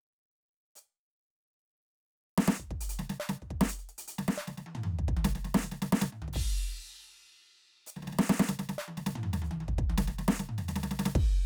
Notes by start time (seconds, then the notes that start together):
0.76 hi-hat pedal
2.38 snare
2.60 kick
2.71 kick
2.81 closed hi-hat
2.90 closed hi-hat
2.99 snare
3.10 snare
3.20 percussion
3.30 snare
3.43 kick
3.51 kick
3.61 snare
3.69 closed hi-hat
3.89 closed hi-hat
3.99 closed hi-hat
4.08 closed hi-hat
4.19 snare
4.29 snare
4.38 percussion
4.48 snare
4.58 snare
4.67 high tom
4.75 mid tom
4.84 high tom
4.99 kick
5.09 kick
5.17 floor tom
5.25 snare
5.36 snare
5.45 snare
5.55 snare
5.64 snare
5.72 snare
5.82 snare
5.93 snare
6.02 snare
6.13 mid tom
6.22 floor tom
6.28 kick
6.33 kick, crash
7.87 hi-hat pedal
7.97 snare
8.03 snare
8.08 snare
8.13 snare
8.19 snare
8.30 snare
8.49 snare
8.60 snare
8.69 snare
8.79 percussion
8.88 high tom
8.98 snare
9.07 snare
9.16 mid tom
9.24 high tom
9.34 snare
9.42 hi-hat pedal, high tom
9.51 floor tom
9.61 high tom
9.69 kick
9.90 floor tom
9.98 snare
10.08 snare
10.19 snare
10.29 snare, hi-hat pedal
10.40 snare
10.49 mid tom
10.59 snare
10.69 snare, hi-hat pedal
10.76 snare
10.84 snare
10.91 snare
11.00 snare
11.06 snare
11.16 kick, crash